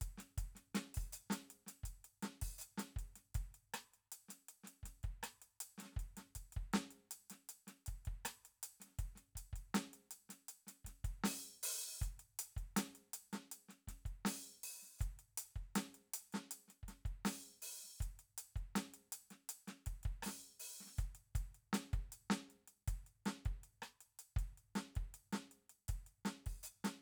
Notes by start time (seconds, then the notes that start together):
0.01 kick, closed hi-hat
0.18 snare, closed hi-hat
0.38 kick, closed hi-hat
0.55 snare, closed hi-hat
0.75 snare, closed hi-hat
0.94 kick, open hi-hat
1.12 closed hi-hat, hi-hat pedal
1.30 snare, closed hi-hat
1.50 closed hi-hat
1.66 snare, closed hi-hat
1.83 kick, closed hi-hat
2.04 closed hi-hat
2.22 snare, closed hi-hat
2.41 kick, open hi-hat
2.58 closed hi-hat, hi-hat pedal
2.78 snare, closed hi-hat
2.96 kick, closed hi-hat
3.15 snare, closed hi-hat
3.34 kick, closed hi-hat
3.54 closed hi-hat
3.74 cross-stick, closed hi-hat
3.93 closed hi-hat
4.12 closed hi-hat
4.28 snare, closed hi-hat
4.48 closed hi-hat
4.63 snare, closed hi-hat
4.83 kick, snare, closed hi-hat
5.03 kick, closed hi-hat
5.23 cross-stick, closed hi-hat
5.42 closed hi-hat
5.60 closed hi-hat
5.78 snare, closed hi-hat
5.81 snare
5.84 snare
5.92 snare
5.96 kick, closed hi-hat
6.17 snare, closed hi-hat
6.35 kick, closed hi-hat
6.52 closed hi-hat
6.56 kick
6.73 snare, closed hi-hat
6.90 closed hi-hat
7.11 closed hi-hat
7.30 snare, closed hi-hat
7.49 closed hi-hat
7.67 snare, closed hi-hat
7.86 kick, closed hi-hat
8.05 kick, closed hi-hat
8.25 cross-stick, closed hi-hat
8.45 closed hi-hat
8.63 closed hi-hat
8.80 snare, closed hi-hat
8.83 snare
8.86 snare
8.90 snare
8.99 kick, closed hi-hat
9.15 snare, closed hi-hat
9.35 kick, closed hi-hat
9.53 kick, closed hi-hat
9.74 snare, closed hi-hat
9.93 closed hi-hat
10.11 closed hi-hat
10.29 snare, closed hi-hat
10.48 closed hi-hat
10.67 snare, closed hi-hat
10.84 kick, snare, closed hi-hat
11.04 kick, closed hi-hat
11.24 open hi-hat, snare
11.63 open hi-hat
12.01 kick, closed hi-hat, hi-hat pedal
12.19 closed hi-hat
12.39 closed hi-hat
12.56 kick, closed hi-hat
12.76 snare, closed hi-hat
12.95 closed hi-hat
13.13 closed hi-hat
13.33 snare, closed hi-hat
13.51 closed hi-hat
13.68 snare, closed hi-hat
13.87 kick, snare, closed hi-hat
14.05 kick, closed hi-hat
14.25 open hi-hat, snare
14.63 open hi-hat
14.82 snare
14.99 kick, closed hi-hat, hi-hat pedal
15.19 closed hi-hat
15.37 closed hi-hat
15.56 kick, closed hi-hat
15.75 snare, closed hi-hat
15.94 closed hi-hat
16.13 closed hi-hat
16.32 snare, closed hi-hat
16.51 closed hi-hat
16.68 snare, closed hi-hat
16.83 kick
16.88 snare, closed hi-hat
17.05 kick, closed hi-hat
17.25 open hi-hat, snare
17.62 open hi-hat
17.84 snare
17.99 kick, closed hi-hat, hi-hat pedal
18.19 closed hi-hat
18.38 closed hi-hat
18.56 kick, closed hi-hat
18.75 snare, closed hi-hat
18.94 closed hi-hat
19.12 closed hi-hat
19.30 snare, closed hi-hat
19.49 closed hi-hat
19.67 snare, closed hi-hat
19.86 kick, closed hi-hat
20.03 kick, closed hi-hat
20.22 open hi-hat, cross-stick, snare
20.60 open hi-hat
20.80 snare
20.86 snare
20.90 snare
20.95 kick, snare, closed hi-hat, hi-hat pedal
21.15 closed hi-hat
21.35 kick, closed hi-hat
21.54 closed hi-hat
21.73 snare, closed hi-hat
21.93 kick, closed hi-hat
22.12 closed hi-hat
22.30 snare, closed hi-hat
22.50 closed hi-hat
22.68 closed hi-hat
22.88 kick, closed hi-hat
23.06 closed hi-hat
23.25 snare, closed hi-hat
23.45 kick, closed hi-hat
23.63 closed hi-hat
23.82 cross-stick, closed hi-hat
24.00 closed hi-hat
24.19 closed hi-hat
24.36 kick, closed hi-hat
24.57 closed hi-hat
24.75 snare, closed hi-hat
24.95 kick, closed hi-hat
25.14 closed hi-hat
25.33 snare, closed hi-hat
25.51 closed hi-hat
25.69 closed hi-hat
25.88 kick, closed hi-hat
26.06 closed hi-hat
26.25 snare, closed hi-hat
26.46 kick, open hi-hat
26.63 closed hi-hat, hi-hat pedal
26.84 snare, closed hi-hat